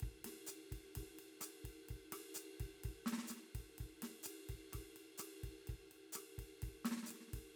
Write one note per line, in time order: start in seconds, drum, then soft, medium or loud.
0.01 kick soft
0.01 ride soft
0.09 kick soft
0.22 kick soft
0.22 ride medium
0.26 snare soft
0.47 hi-hat pedal medium
0.47 ride soft
0.72 kick soft
0.72 ride soft
0.85 snare soft
0.96 kick soft
0.96 snare soft
0.96 ride medium
1.03 kick soft
1.20 ride soft
1.42 cross-stick soft
1.42 hi-hat pedal medium
1.42 ride medium
1.65 kick soft
1.65 ride soft
1.89 kick soft
1.89 ride soft
1.96 kick soft
2.13 cross-stick soft
2.13 snare soft
2.13 ride medium
2.35 hi-hat pedal medium
2.35 ride medium
2.61 kick soft
2.61 ride soft
2.66 kick soft
2.84 kick soft
2.84 ride soft
2.91 kick soft
3.07 snare medium
3.07 ride medium
3.13 snare soft
3.19 snare soft
3.24 snare soft
3.28 snare soft
3.28 hi-hat pedal medium
3.32 ride soft
3.37 snare soft
3.44 snare soft
3.53 kick soft
3.53 snare soft
3.53 ride soft
3.61 kick soft
3.79 kick soft
3.79 ride soft
3.86 kick soft
4.03 snare soft
4.03 ride medium
4.24 hi-hat pedal medium
4.24 ride medium
4.50 kick soft
4.50 ride soft
4.55 kick soft
4.73 kick soft
4.73 cross-stick soft
4.73 snare soft
4.73 ride medium
4.81 kick soft
4.97 ride soft
5.19 cross-stick soft
5.19 snare soft
5.19 hi-hat pedal medium
5.19 ride medium
5.44 kick soft
5.44 ride soft
5.49 kick soft
5.68 kick soft
5.68 ride soft
5.75 kick soft
5.92 ride soft
6.13 cross-stick soft
6.13 snare soft
6.13 hi-hat pedal medium
6.13 ride medium
6.39 kick soft
6.39 ride soft
6.63 kick soft
6.63 ride soft
6.69 kick soft
6.85 snare medium
6.85 ride medium
6.92 snare soft
6.97 snare soft
7.04 snare soft
7.04 hi-hat pedal medium
7.09 snare soft
7.09 ride soft
7.15 snare soft
7.21 snare soft
7.28 snare soft
7.34 kick soft
7.34 snare soft
7.34 ride medium
7.39 kick soft
7.39 snare soft
7.43 snare soft